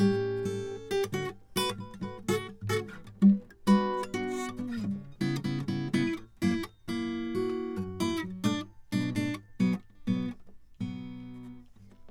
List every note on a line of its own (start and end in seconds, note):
0.00 0.82 A2
0.00 0.76 G3
0.00 1.08 C#4
0.00 0.82 G4
0.47 1.00 A4
0.92 1.09 G4
1.14 1.31 D3
1.14 1.34 A3
1.14 1.36 C#4
1.14 1.34 F#4
1.57 1.76 C#3
1.57 1.74 A3
1.57 1.75 C#4
1.57 1.76 F#4
1.57 1.77 B4
1.80 1.89 C#3
1.80 1.97 A3
1.80 1.96 F#4
1.80 1.99 B4
2.03 2.15 C#3
2.03 2.20 A3
2.03 2.16 C4
2.03 2.22 F#4
2.03 2.20 B4
2.29 2.43 D3
2.29 2.42 A3
2.29 2.53 F#4
2.29 2.40 A4
2.70 3.04 D3
2.70 2.87 A3
2.70 2.91 C#4
2.70 2.87 F#4
2.70 2.82 A4
3.23 3.36 G3
3.23 3.43 B3
3.23 3.33 C#4
3.23 3.50 B4
3.68 4.07 B3
3.68 4.00 D4
3.68 4.07 F#4
3.68 4.07 B4
3.77 4.45 G3
4.15 4.53 B3
4.15 4.43 D4
4.15 4.54 F#4
4.60 4.83 B3
4.60 4.74 D4
4.86 5.16 C#3
5.22 5.42 C#3
5.22 5.40 B3
5.22 5.41 E4
5.46 5.67 C#3
5.46 5.65 B3
5.46 5.64 E4
5.70 5.92 C#3
5.70 5.90 B3
5.70 5.91 E4
5.95 6.07 C#3
5.95 6.10 B3
5.95 6.23 E4
6.43 6.74 F2
6.43 6.60 E3
6.43 6.60 A#3
6.43 6.67 E4
6.89 7.01 F2
6.89 7.08 E3
6.89 7.81 A#3
6.89 7.82 E4
7.36 8.19 F#4
7.78 8.37 F#2
8.01 8.19 E3
8.01 8.18 A#3
8.01 8.27 E4
8.25 8.65 F#3
8.45 8.64 B2
8.45 8.64 A3
8.45 8.66 D4
8.93 9.15 B2
8.93 9.14 F#3
8.93 9.02 A3
8.93 9.13 D4
9.16 9.38 B2
9.16 9.30 F#3
9.16 9.40 A3
9.16 9.40 D4
9.61 9.77 B2
9.61 9.80 F#3
9.61 9.79 B3
10.08 10.34 B2
10.08 10.39 F#3
10.08 10.37 B3
10.82 11.62 B2
10.82 11.31 F#3
10.82 11.73 B3